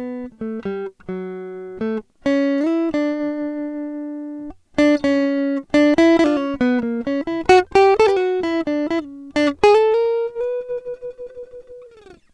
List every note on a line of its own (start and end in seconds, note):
0.00 0.33 B3
0.43 0.65 A3
0.65 0.95 G3
1.11 1.82 F#3
1.83 2.04 A3
2.28 2.62 C#4
2.63 2.93 E4
2.96 4.57 D4
4.80 5.01 D4
5.06 5.67 C#4
5.76 5.98 D4
6.00 6.18 E4
6.18 6.26 E4
6.26 6.38 D4
6.38 6.61 C#4
6.62 6.80 B3
6.80 7.07 A#3
7.09 7.26 C#4
7.29 7.46 E4
7.51 7.69 F#4
7.77 7.98 G4
8.01 8.18 G#4
8.18 8.27 F#4
8.28 8.48 F#4
8.45 8.65 E4
8.69 8.90 D4
8.92 9.01 E4
9.02 9.35 C#4
9.38 9.58 D4
9.65 9.75 G#4
9.76 9.95 A4
9.96 10.42 A#4
10.42 11.31 B4